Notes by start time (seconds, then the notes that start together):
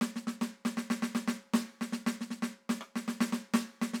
0.04 snare
0.16 snare
0.27 snare
0.41 snare
0.65 snare
0.77 snare
0.90 snare
1.02 snare
1.15 snare
1.28 snare
1.54 snare
1.81 snare
1.92 snare
2.06 snare
2.21 snare
2.30 snare
2.42 snare
2.69 snare
2.81 cross-stick
2.96 snare
3.08 snare
3.21 snare
3.32 snare
3.54 snare
3.82 snare
3.94 snare